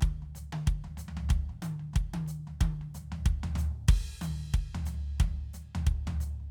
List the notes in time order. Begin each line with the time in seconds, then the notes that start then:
0.01 kick, floor tom, high tom
0.22 floor tom
0.35 floor tom, hi-hat pedal
0.53 high tom
0.67 kick, floor tom
0.84 floor tom
0.97 floor tom, hi-hat pedal
1.08 floor tom
1.17 floor tom
1.29 kick, floor tom
1.49 kick, floor tom
1.62 hi-hat pedal, high tom
1.80 floor tom
1.94 kick, floor tom
2.14 high tom
2.27 floor tom, hi-hat pedal
2.47 floor tom
2.61 kick, high tom
2.81 floor tom
2.95 floor tom, hi-hat pedal
3.12 floor tom
3.26 kick, floor tom
3.44 floor tom
3.56 floor tom, hi-hat pedal
3.88 kick, floor tom, crash
4.21 floor tom, hi-hat pedal, high tom
4.54 kick, floor tom
4.75 floor tom
4.86 floor tom, hi-hat pedal
5.19 kick, floor tom
5.21 floor tom
5.54 floor tom, hi-hat pedal
5.75 floor tom
5.87 kick, floor tom
6.07 floor tom
6.20 floor tom, hi-hat pedal
6.40 floor tom